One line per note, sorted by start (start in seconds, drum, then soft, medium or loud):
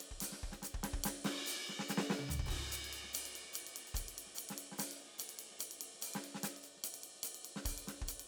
0.01 ride medium
0.12 kick soft
0.21 snare soft
0.21 hi-hat pedal loud
0.21 ride medium
0.32 snare soft
0.44 kick soft
0.52 snare soft
0.52 ride soft
0.63 snare soft
0.63 hi-hat pedal loud
0.63 ride medium
0.75 kick soft
0.84 snare medium
0.84 hi-hat pedal soft
0.84 ride medium
0.94 kick soft
1.04 snare medium
1.04 hi-hat pedal loud
1.04 ride loud
1.25 snare medium
1.25 hi-hat pedal soft
1.25 ride loud
1.47 hi-hat pedal loud
1.47 ride medium
1.57 snare soft
1.67 snare soft
1.67 hi-hat pedal soft
1.80 snare medium
1.89 snare medium
1.89 hi-hat pedal loud
1.98 snare medium
2.10 snare medium
2.20 high tom medium
2.30 hi-hat pedal loud
2.30 floor tom soft
2.40 kick soft
2.47 kick soft
2.47 hi-hat pedal soft
2.47 crash medium
2.51 ride loud
2.72 hi-hat pedal loud
2.72 ride medium
2.85 ride medium
2.93 hi-hat pedal medium
2.93 ride medium
3.04 snare soft
3.14 hi-hat pedal loud
3.14 ride loud
3.26 ride medium
3.36 ride medium
3.44 snare soft
3.54 hi-hat pedal medium
3.54 ride loud
3.67 ride medium
3.77 ride medium
3.88 open hi-hat medium
3.95 kick soft
3.95 hi-hat pedal medium
3.95 ride medium
4.09 ride medium
4.19 ride medium
4.27 snare soft
4.32 snare soft
4.32 hi-hat pedal medium
4.39 ride loud
4.50 snare soft
4.50 ride medium
4.58 ride medium
4.72 snare soft
4.79 snare soft
4.79 hi-hat pedal loud
4.79 ride medium
4.92 ride medium
4.98 hi-hat pedal soft
4.98 ride soft
5.19 hi-hat pedal medium
5.19 ride loud
5.30 ride medium
5.39 ride medium
5.51 snare soft
5.60 hi-hat pedal loud
5.60 ride loud
5.72 ride medium
5.81 ride medium
5.95 snare soft
6.02 hi-hat pedal loud
6.02 ride medium
6.14 snare medium
6.14 ride medium
6.25 ride medium
6.35 snare soft
6.44 snare medium
6.44 hi-hat pedal loud
6.44 ride medium
6.57 ride soft
6.64 hi-hat pedal medium
6.64 ride soft
6.77 snare soft
6.84 hi-hat pedal loud
6.84 ride loud
6.95 ride medium
7.04 ride medium
7.15 snare soft
7.24 hi-hat pedal loud
7.24 ride loud
7.35 ride medium
7.44 hi-hat pedal soft
7.44 ride medium
7.56 snare soft
7.66 kick soft
7.66 hi-hat pedal medium
7.66 ride medium
7.78 ride medium
7.86 snare soft
7.86 hi-hat pedal soft
7.86 ride medium
8.02 kick soft
8.08 hi-hat pedal loud
8.08 ride medium
8.20 ride medium